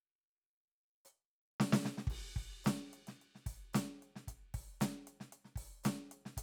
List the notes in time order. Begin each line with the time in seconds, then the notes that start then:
1.05 hi-hat pedal
1.60 snare
1.72 snare
1.85 snare
1.97 snare
2.07 kick, crash
2.36 kick, open hi-hat
2.64 snare, closed hi-hat, hi-hat pedal
2.84 snare
2.93 closed hi-hat
3.07 snare, closed hi-hat
3.21 closed hi-hat
3.35 snare
3.46 kick, open hi-hat
3.73 closed hi-hat, snare, hi-hat pedal
4.02 closed hi-hat
4.16 snare
4.27 kick, closed hi-hat
4.54 kick, open hi-hat
4.80 snare, closed hi-hat, hi-hat pedal
5.07 closed hi-hat
5.20 snare
5.32 closed hi-hat
5.44 snare
5.56 kick, open hi-hat
5.83 snare, closed hi-hat, hi-hat pedal
6.11 closed hi-hat
6.25 snare
6.37 kick, closed hi-hat